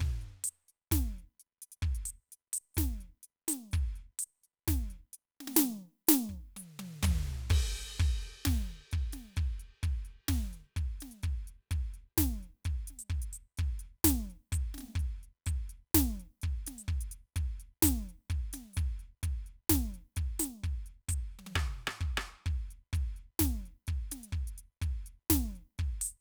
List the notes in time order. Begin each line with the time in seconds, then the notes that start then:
0.01 kick
0.21 closed hi-hat
0.44 closed hi-hat
0.69 closed hi-hat
0.92 kick, snare, closed hi-hat
1.19 closed hi-hat
1.40 closed hi-hat
1.62 closed hi-hat
1.72 closed hi-hat
1.83 kick
1.95 closed hi-hat
2.06 closed hi-hat
2.32 closed hi-hat
2.54 open hi-hat
2.75 kick, snare, closed hi-hat, hi-hat pedal
3.01 closed hi-hat
3.23 closed hi-hat
3.48 open hi-hat, snare
3.72 kick, closed hi-hat, hi-hat pedal
3.96 closed hi-hat
4.19 closed hi-hat
4.44 closed hi-hat
4.68 kick, snare, closed hi-hat
4.90 closed hi-hat
5.13 closed hi-hat
5.41 snare
5.48 snare
5.55 snare, hi-hat pedal
6.08 snare, hi-hat pedal
6.29 kick
6.57 hi-hat pedal, high tom
6.79 high tom
7.03 kick, floor tom, hi-hat pedal, high tom
7.50 kick, crash
8.00 kick, closed hi-hat
8.22 closed hi-hat
8.46 kick, snare, closed hi-hat
8.92 kick, closed hi-hat
9.13 snare, closed hi-hat
9.37 kick, closed hi-hat
9.60 closed hi-hat
9.83 kick, closed hi-hat
10.05 closed hi-hat
10.29 kick, snare, closed hi-hat
10.53 closed hi-hat
10.77 kick, closed hi-hat
11.01 snare, closed hi-hat
11.12 closed hi-hat
11.23 kick, closed hi-hat
11.48 closed hi-hat
11.71 kick, closed hi-hat
11.94 closed hi-hat
12.18 kick, snare, closed hi-hat
12.43 closed hi-hat
12.65 kick, closed hi-hat
12.88 snare, closed hi-hat
12.99 closed hi-hat
13.10 kick
13.22 closed hi-hat
13.33 closed hi-hat
13.58 kick, closed hi-hat
13.80 closed hi-hat
14.05 closed hi-hat, kick, snare
14.30 closed hi-hat
14.53 closed hi-hat, kick
14.75 snare
14.78 snare, closed hi-hat
14.81 snare
14.89 snare
14.93 kick, snare
15.00 closed hi-hat
15.23 closed hi-hat
15.46 closed hi-hat, kick
15.70 closed hi-hat
15.95 kick, snare, closed hi-hat
16.20 closed hi-hat
16.42 kick, closed hi-hat
16.67 snare, closed hi-hat
16.79 closed hi-hat
16.88 kick
17.01 closed hi-hat
17.12 closed hi-hat
17.36 kick, closed hi-hat
17.60 closed hi-hat
17.83 closed hi-hat, kick, snare
18.09 closed hi-hat
18.30 kick, closed hi-hat
18.53 snare, open hi-hat
18.74 kick, snare, hi-hat pedal
18.78 closed hi-hat
19.00 closed hi-hat
19.23 kick, closed hi-hat
19.46 closed hi-hat
19.70 kick, snare, closed hi-hat
19.94 closed hi-hat
20.17 kick, closed hi-hat
20.40 closed hi-hat, snare
20.64 kick, closed hi-hat
20.86 closed hi-hat
21.09 closed hi-hat, kick
21.39 high tom
21.47 high tom
21.56 kick, cross-stick
21.88 cross-stick
22.01 kick
22.18 cross-stick
22.46 kick
22.71 closed hi-hat
22.93 kick, closed hi-hat
23.17 closed hi-hat
23.40 kick, snare, closed hi-hat
23.66 closed hi-hat
23.87 kick, closed hi-hat
24.12 snare, closed hi-hat
24.24 closed hi-hat
24.33 kick
24.48 closed hi-hat
24.58 closed hi-hat
24.82 kick, closed hi-hat
25.06 closed hi-hat
25.30 kick, snare, closed hi-hat
25.56 closed hi-hat
25.79 kick, closed hi-hat
26.02 open hi-hat